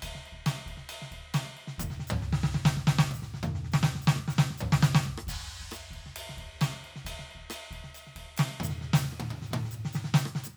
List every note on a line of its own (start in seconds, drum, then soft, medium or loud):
0.02 kick soft
0.02 ride bell loud
0.02 percussion medium
0.09 kick soft
0.15 snare soft
0.26 ride soft
0.32 kick soft
0.46 snare medium
0.46 ride bell loud
0.46 percussion medium
0.66 kick soft
0.66 ride medium
0.72 kick soft
0.77 snare soft
0.89 ride bell loud
0.89 percussion medium
1.02 snare soft
1.11 kick soft
1.11 ride medium
1.17 kick soft
1.34 snare medium
1.34 ride bell loud
1.34 percussion medium
1.57 ride soft
1.67 snare medium
1.78 kick soft
1.78 mid tom medium
1.78 percussion loud
1.85 kick soft
1.90 snare medium
1.99 snare medium
2.07 percussion medium
2.07 floor tom loud
2.22 snare soft
2.33 snare loud
2.43 snare loud
2.54 snare medium
2.65 snare loud
2.77 snare medium
2.87 snare loud
2.99 snare loud
3.11 high tom medium
3.11 percussion medium
3.22 snare medium
3.34 snare medium
3.43 mid tom loud
3.43 percussion soft
3.55 snare soft
3.64 snare soft
3.72 snare loud
3.72 percussion medium
3.83 snare loud
3.86 snare medium
3.95 snare medium
4.02 percussion medium
4.07 snare loud
4.16 cross-stick medium
4.19 cross-stick soft
4.28 snare medium
4.28 percussion medium
4.38 snare loud
4.50 snare medium
4.58 percussion medium
4.58 floor tom loud
4.72 snare loud
4.80 kick soft
4.80 snare loud
4.80 percussion medium
4.95 snare loud
5.02 snare medium
5.02 percussion soft
5.18 cross-stick medium
5.27 kick soft
5.27 percussion loud
5.27 crash loud
5.34 kick soft
5.60 kick soft
5.65 kick soft
5.71 cross-stick medium
5.71 ride bell medium
5.71 percussion medium
5.91 kick soft
5.91 ride soft
5.96 kick soft
6.06 snare soft
6.16 ride loud
6.16 percussion medium
6.29 snare soft
6.37 kick soft
6.37 ride medium
6.61 snare loud
6.61 ride bell loud
6.61 percussion medium
6.84 ride soft
6.96 snare soft
7.05 kick soft
7.05 ride bell loud
7.05 percussion medium
7.11 kick soft
7.19 snare soft
7.31 ride soft
7.35 kick soft
7.40 kick soft
7.50 cross-stick medium
7.50 ride bell loud
7.50 percussion medium
7.71 kick soft
7.71 ride medium
7.77 kick soft
7.84 snare soft
7.94 ride bell medium
7.94 percussion medium
8.07 snare soft
8.16 kick soft
8.16 ride medium
8.37 snare loud
8.37 ride loud
8.37 percussion medium
8.60 mid tom loud
8.60 percussion loud
8.69 snare medium
8.81 snare soft
8.93 snare loud
8.93 percussion loud
9.04 snare medium
9.12 cross-stick medium
9.20 high tom loud
9.30 high tom medium
9.42 snare medium
9.46 percussion soft
9.51 snare soft
9.51 high tom loud
9.65 snare soft
9.71 high tom soft
9.71 percussion medium
9.85 snare medium
9.93 snare medium
9.93 percussion medium
10.04 snare medium
10.14 snare loud
10.14 percussion medium
10.25 cross-stick medium
10.35 snare medium
10.44 cross-stick soft
10.44 percussion loud